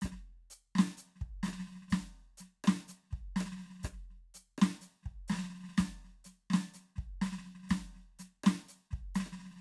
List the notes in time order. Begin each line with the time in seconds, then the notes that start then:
0.02 kick, cross-stick, snare, hi-hat pedal
0.12 snare
0.50 hi-hat pedal
0.75 snare
0.79 snare
0.90 snare
0.96 snare, hi-hat pedal
1.06 snare
1.10 snare
1.13 snare
1.16 snare
1.21 kick
1.43 snare, hi-hat pedal
1.46 cross-stick, snare
1.53 snare
1.58 snare
1.60 snare
1.64 snare
1.67 snare
1.72 snare
1.75 snare
1.82 snare
1.88 kick, snare, hi-hat pedal
1.93 snare
2.03 snare
2.10 snare
2.13 snare
2.19 snare
2.38 snare, hi-hat pedal
2.64 cross-stick, snare
2.88 snare, hi-hat pedal
2.97 snare
3.03 snare
3.06 snare
3.10 kick, snare
3.21 kick
3.36 snare, hi-hat pedal
3.40 cross-stick, snare
3.46 snare
3.52 snare
3.57 snare
3.59 snare
3.64 snare
3.66 snare
3.70 snare
3.76 snare
3.79 snare
3.83 kick, cross-stick, snare, hi-hat pedal
3.93 snare
3.97 snare
4.04 snare
4.10 snare
4.34 snare, hi-hat pedal
4.58 cross-stick, snare
4.71 snare
4.81 snare, hi-hat pedal
4.89 snare
4.94 snare
4.97 snare
5.00 snare
5.03 kick, snare
5.11 kick
5.28 snare, hi-hat pedal
5.32 snare
5.35 snare
5.39 snare
5.44 snare
5.50 snare
5.55 snare
5.60 snare
5.64 snare
5.69 snare
5.73 snare
5.77 kick, snare, hi-hat pedal
5.92 snare
5.96 snare
6.00 snare
6.04 snare
6.24 snare, hi-hat pedal
6.50 snare
6.54 snare
6.63 snare
6.74 snare, hi-hat pedal
6.81 snare
6.89 snare
6.96 kick, snare
7.22 snare, hi-hat pedal
7.26 snare
7.32 snare
7.39 snare
7.44 snare
7.46 snare
7.55 snare
7.59 snare
7.63 snare
7.67 kick, snare, hi-hat pedal
7.71 snare
7.76 kick
7.81 snare
7.87 snare
7.94 snare
7.96 snare
8.07 snare
8.10 snare
8.12 snare
8.19 snare, hi-hat pedal
8.44 cross-stick, snare
8.69 snare, hi-hat pedal
8.76 snare
8.91 kick, snare
8.99 kick
9.01 kick
9.15 snare, hi-hat pedal
9.20 snare
9.26 cross-stick
9.32 snare
9.37 snare
9.39 snare
9.43 snare
9.46 snare
9.51 snare
9.56 snare